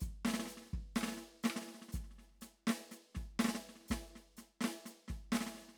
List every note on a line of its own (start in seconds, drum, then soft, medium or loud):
0.01 kick soft
0.01 hi-hat pedal medium
0.05 kick soft
0.05 snare soft
0.11 kick soft
0.25 snare medium
0.28 snare medium
0.30 snare medium
0.34 snare medium
0.40 snare medium
0.43 snare soft
0.46 snare soft
0.47 snare soft
0.47 hi-hat pedal medium
0.52 snare soft
0.62 snare soft
0.67 snare soft
0.71 kick soft
0.71 snare soft
0.96 snare medium
0.96 hi-hat pedal medium
1.02 cross-stick medium
1.02 snare medium
1.09 snare medium
1.12 snare soft
1.18 snare soft
1.23 snare soft
1.44 snare medium
1.44 hi-hat pedal medium
1.51 cross-stick medium
1.57 snare medium
1.61 snare soft
1.62 snare soft
1.67 snare soft
1.73 snare soft
1.75 snare soft
1.82 snare soft
1.89 snare soft
1.89 hi-hat pedal medium
1.95 kick soft
1.95 snare soft
2.04 snare soft
2.11 snare soft
2.16 snare soft
2.19 snare soft
2.29 snare soft
2.33 snare soft
2.35 snare soft
2.42 snare soft
2.42 hi-hat pedal medium
2.68 snare medium
2.70 snare medium
2.81 snare soft
2.92 snare soft
2.92 hi-hat pedal medium
3.04 snare soft
3.06 snare soft
3.15 kick soft
3.15 snare soft
3.23 kick soft
3.40 snare loud
3.40 hi-hat pedal medium
3.45 snare medium
3.49 snare medium
3.55 snare medium
3.62 snare soft
3.69 snare soft
3.76 snare soft
3.81 snare soft
3.86 snare soft
3.86 hi-hat pedal medium
3.91 kick soft
3.91 snare medium
3.96 kick soft
4.05 snare soft
4.08 snare soft
4.16 snare soft
4.37 snare soft
4.37 hi-hat pedal medium
4.61 snare medium
4.65 snare medium
4.68 snare soft
4.86 snare soft
4.86 hi-hat pedal medium
4.91 snare soft
4.98 snare soft
5.09 kick soft
5.09 snare soft
5.33 snare medium
5.33 hi-hat pedal medium
5.35 cross-stick medium
5.35 snare medium
5.41 snare medium
5.47 snare medium
5.52 snare soft
5.55 snare soft
5.58 snare soft
5.62 snare soft
5.69 snare soft
5.75 snare soft